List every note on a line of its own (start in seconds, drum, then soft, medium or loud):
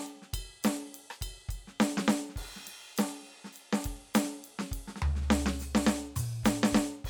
0.01 hi-hat pedal soft
0.07 ride soft
0.23 snare soft
0.34 kick medium
0.34 snare soft
0.34 ride bell loud
0.41 kick soft
0.46 kick soft
0.63 snare loud
0.63 hi-hat pedal medium
0.63 ride loud
0.71 cross-stick soft
0.95 ride medium
1.11 cross-stick medium
1.21 kick soft
1.21 hi-hat pedal soft
1.21 ride bell loud
1.28 kick soft
1.31 kick soft
1.50 kick medium
1.50 ride bell medium
1.56 kick soft
1.68 snare soft
1.81 snare loud
1.81 hi-hat pedal medium
1.98 snare loud
2.07 snare loud
2.07 hi-hat pedal soft
2.30 snare soft
2.34 kick soft
2.34 hi-hat pedal soft
2.34 crash medium
2.43 kick soft
2.46 kick soft
2.57 snare soft
2.68 snare soft
2.68 ride medium
2.97 snare loud
2.97 hi-hat pedal medium
2.97 ride loud
3.25 hi-hat pedal soft
3.25 ride soft
3.45 snare soft
3.53 hi-hat pedal medium
3.53 ride medium
3.73 snare loud
3.85 kick medium
3.85 ride loud
3.93 kick soft
3.96 kick soft
4.15 snare loud
4.15 hi-hat pedal loud
4.15 ride loud
4.24 snare soft
4.45 ride medium
4.60 snare medium
4.72 kick medium
4.72 ride medium
4.79 kick soft
4.82 kick soft
4.88 snare soft
4.97 snare soft
5.03 floor tom loud
5.16 snare soft
5.22 snare soft
5.31 snare loud
5.47 snare loud
5.60 snare soft
5.60 hi-hat pedal medium
5.76 snare loud
5.87 snare loud
6.17 hi-hat pedal loud
6.17 mid tom loud
6.44 kick soft
6.44 snare loud
6.44 hi-hat pedal loud
6.64 snare loud
6.73 kick soft
6.73 snare loud
7.05 kick soft
7.05 crash loud